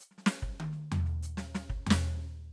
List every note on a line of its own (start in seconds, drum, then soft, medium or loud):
0.00 hi-hat pedal medium
0.11 snare soft
0.18 snare soft
0.26 snare loud
0.42 kick medium
0.60 closed hi-hat soft
0.60 high tom loud
0.72 snare soft
0.81 snare soft
0.92 floor tom loud
1.06 snare soft
1.23 hi-hat pedal loud
1.37 snare medium
1.55 snare medium
1.69 kick medium
1.87 snare loud
1.87 floor tom loud